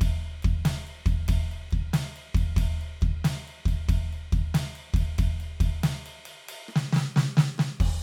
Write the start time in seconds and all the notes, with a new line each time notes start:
0.02 kick, ride
0.44 kick, ride
0.66 snare, ride
0.88 ride
1.07 kick, ride
1.29 kick, ride
1.53 ride
1.72 kick, ride
1.95 snare, ride
2.17 ride
2.36 kick, ride
2.58 kick, ride
2.82 ride
3.02 kick, ride
3.26 snare, ride
3.49 ride
3.67 kick, ride
3.90 kick, ride
4.14 ride
4.34 kick, ride
4.56 snare, ride
4.77 ride
4.95 kick, ride
5.20 kick, ride
5.41 ride
5.61 kick, ride
5.85 snare, ride
6.07 ride
6.27 ride
6.50 ride
6.70 cross-stick
6.77 snare
6.94 snare
6.97 snare
7.17 snare
7.38 snare
7.59 cross-stick, snare
7.81 kick, crash